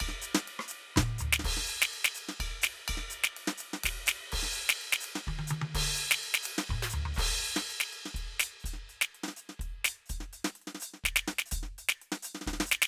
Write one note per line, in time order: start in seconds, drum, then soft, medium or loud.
0.01 kick soft
0.01 ride bell loud
0.08 kick soft
0.08 snare soft
0.11 kick soft
0.22 hi-hat pedal loud
0.22 ride medium
0.35 snare loud
0.48 ride medium
0.60 cross-stick medium
0.69 hi-hat pedal medium
0.69 ride medium
0.97 kick soft
0.97 snare loud
0.97 mid tom loud
1.04 kick soft
1.08 kick soft
1.19 kick soft
1.19 floor tom medium
1.19 hi-hat pedal medium
1.33 snare loud
1.40 snare medium
1.45 kick medium
1.45 crash medium
1.52 kick soft
1.57 snare soft
1.67 hi-hat pedal medium
1.67 ride medium
1.83 snare loud
1.94 ride medium
2.05 snare loud
2.15 hi-hat pedal medium
2.15 ride medium
2.29 snare medium
2.41 kick soft
2.41 ride bell loud
2.46 kick soft
2.49 kick soft
2.62 snare loud
2.62 hi-hat pedal medium
2.62 ride medium
2.89 kick soft
2.89 ride bell loud
2.96 kick soft
2.96 snare soft
2.99 kick soft
3.11 hi-hat pedal medium
3.11 ride soft
3.25 snare loud
3.37 ride medium
3.48 snare medium
3.58 hi-hat pedal medium
3.58 ride medium
3.74 snare medium
3.84 kick soft
3.84 snare medium
3.84 ride loud
4.07 snare loud
4.07 hi-hat pedal medium
4.07 ride loud
4.33 kick soft
4.33 crash medium
4.40 kick soft
4.43 kick soft
4.43 snare soft
4.53 hi-hat pedal medium
4.59 ride bell medium
4.70 snare loud
4.82 ride medium
4.93 snare loud
5.01 hi-hat pedal medium
5.05 ride medium
5.16 snare medium
5.28 kick soft
5.28 high tom medium
5.34 kick soft
5.37 kick soft
5.37 high tom medium
5.48 hi-hat pedal medium
5.48 high tom loud
5.62 high tom loud
5.75 kick medium
5.75 crash medium
5.82 kick soft
5.96 hi-hat pedal medium
6.01 ride medium
6.12 snare loud
6.24 ride medium
6.35 snare loud
6.44 hi-hat pedal medium
6.44 ride loud
6.59 snare medium
6.70 kick soft
6.70 mid tom loud
6.76 kick soft
6.79 kick soft
6.83 snare medium
6.91 floor tom medium
6.91 hi-hat pedal medium
7.06 floor tom medium
7.15 kick medium
7.15 percussion soft
7.15 hi-hat pedal soft
7.19 crash medium
7.25 kick soft
7.30 kick soft
7.45 open hi-hat medium
7.57 snare medium
7.57 hi-hat pedal soft
7.70 closed hi-hat soft
7.81 snare medium
7.88 hi-hat pedal soft
7.94 closed hi-hat soft
8.06 snare soft
8.15 kick soft
8.15 closed hi-hat soft
8.23 kick soft
8.40 closed hi-hat loud
8.40 snare loud
8.61 hi-hat pedal soft
8.65 closed hi-hat medium
8.65 kick soft
8.74 snare soft
8.90 closed hi-hat soft
9.02 snare loud
9.15 closed hi-hat soft
9.24 snare medium
9.29 snare medium
9.37 hi-hat pedal medium
9.50 snare soft
9.60 kick soft
9.60 closed hi-hat soft
9.66 kick soft
9.85 closed hi-hat medium
9.85 snare loud
10.06 closed hi-hat medium
10.06 hi-hat pedal soft
10.11 kick soft
10.19 kick soft
10.19 snare soft
10.34 closed hi-hat soft
10.45 snare medium
10.56 closed hi-hat soft
10.62 closed hi-hat soft
10.68 snare soft
10.75 snare soft
10.81 closed hi-hat medium
10.81 hi-hat pedal medium
10.94 snare soft
11.05 kick soft
11.05 snare medium
11.17 snare loud
11.28 snare medium
11.39 snare medium
11.46 hi-hat pedal soft
11.52 closed hi-hat medium
11.52 kick soft
11.59 kick soft
11.62 kick soft
11.62 snare soft
11.79 closed hi-hat soft
11.89 snare loud
12.02 closed hi-hat soft
12.13 snare medium
12.23 closed hi-hat medium
12.23 hi-hat pedal medium
12.35 snare soft
12.42 snare soft
12.47 kick soft
12.47 snare medium
12.54 snare medium
12.61 snare medium
12.67 hi-hat pedal medium
12.72 snare loud
12.83 snare loud